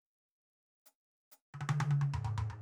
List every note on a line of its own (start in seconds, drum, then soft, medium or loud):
0.86 hi-hat pedal medium
1.32 hi-hat pedal medium
1.54 high tom medium
1.61 high tom medium
1.69 high tom loud
1.80 high tom loud
1.91 high tom medium
2.01 high tom medium
2.14 mid tom medium
2.25 mid tom medium
2.38 mid tom medium
2.50 mid tom medium